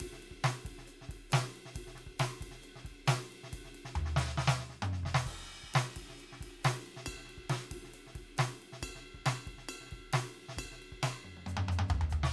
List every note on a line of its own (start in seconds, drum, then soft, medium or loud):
0.01 kick soft
0.01 hi-hat pedal medium
0.01 ride loud
0.08 kick soft
0.13 snare soft
0.23 ride soft
0.32 kick soft
0.44 snare loud
0.44 hi-hat pedal medium
0.44 ride loud
0.66 kick soft
0.66 ride medium
0.79 snare soft
0.88 hi-hat pedal medium
0.88 ride soft
1.02 snare soft
1.10 kick soft
1.10 ride medium
1.17 kick soft
1.31 snare loud
1.31 hi-hat pedal medium
1.31 ride loud
1.41 snare soft
1.57 ride soft
1.66 snare soft
1.75 kick soft
1.75 hi-hat pedal medium
1.75 ride medium
1.83 kick soft
1.88 snare soft
1.96 snare soft
1.96 ride medium
2.07 kick soft
2.13 kick soft
2.19 snare loud
2.19 hi-hat pedal medium
2.19 ride loud
2.42 kick soft
2.42 ride medium
2.48 kick soft
2.48 snare soft
2.63 hi-hat pedal medium
2.63 ride soft
2.76 snare soft
2.85 kick soft
2.85 ride medium
2.92 kick soft
3.07 snare loud
3.07 hi-hat pedal medium
3.07 ride loud
3.33 ride soft
3.44 snare soft
3.53 kick soft
3.53 hi-hat pedal medium
3.53 ride medium
3.61 kick soft
3.66 snare soft
3.75 ride medium
3.86 snare medium
3.96 floor tom loud
3.96 hi-hat pedal medium
4.06 snare medium
4.17 snare loud
4.28 snare medium
4.38 snare loud
4.38 hi-hat pedal medium
4.48 snare loud
4.60 snare medium
4.70 snare soft
4.81 kick soft
4.81 hi-hat pedal medium
4.81 mid tom loud
4.93 snare soft
5.04 kick soft
5.04 snare medium
5.10 kick soft
5.15 snare loud
5.24 kick medium
5.24 hi-hat pedal medium
5.24 crash medium
5.34 kick soft
5.37 kick soft
5.37 snare soft
5.46 snare soft
5.64 kick soft
5.74 snare loud
5.74 hi-hat pedal medium
5.74 ride loud
5.86 snare soft
5.97 kick soft
5.97 ride medium
6.03 kick soft
6.10 snare soft
6.18 hi-hat pedal medium
6.18 ride soft
6.33 snare soft
6.41 kick soft
6.41 ride medium
6.48 kick soft
6.64 snare loud
6.64 hi-hat pedal medium
6.64 ride loud
6.87 ride soft
6.97 snare medium
7.07 kick soft
7.07 hi-hat pedal medium
7.07 ride bell loud
7.14 kick soft
7.14 snare soft
7.26 snare soft
7.30 ride soft
7.38 kick soft
7.50 snare loud
7.50 hi-hat pedal medium
7.50 ride loud
7.72 kick soft
7.72 ride loud
7.78 kick soft
7.85 snare soft
7.94 hi-hat pedal medium
7.94 ride medium
8.08 snare soft
8.16 kick soft
8.16 ride medium
8.22 kick soft
8.37 snare loud
8.37 hi-hat pedal medium
8.37 ride loud
8.63 ride soft
8.73 snare soft
8.83 kick soft
8.83 hi-hat pedal medium
8.83 ride bell loud
8.89 kick soft
8.96 snare soft
9.07 ride soft
9.15 kick soft
9.20 kick soft
9.27 snare loud
9.27 hi-hat pedal medium
9.27 ride bell loud
9.48 kick soft
9.48 ride soft
9.54 kick soft
9.59 snare soft
9.70 hi-hat pedal medium
9.70 ride bell loud
9.81 snare soft
9.87 snare soft
9.92 kick soft
9.92 ride soft
10.02 kick soft
10.14 snare loud
10.14 hi-hat pedal medium
10.14 ride loud
10.38 ride soft
10.50 snare medium
10.58 kick soft
10.58 hi-hat pedal medium
10.58 ride bell loud
10.65 kick soft
10.72 snare soft
10.83 ride soft
10.93 kick soft
11.04 snare medium
11.04 hi-hat pedal medium
11.04 ride bell loud
11.11 snare soft
11.25 mid tom medium
11.38 mid tom soft
11.47 hi-hat pedal medium
11.47 mid tom loud
11.58 mid tom loud
11.69 hi-hat pedal medium
11.69 mid tom loud
11.80 mid tom loud
11.89 hi-hat pedal soft
11.89 floor tom loud
12.02 floor tom loud
12.11 kick soft
12.11 hi-hat pedal medium
12.11 floor tom medium
12.24 snare loud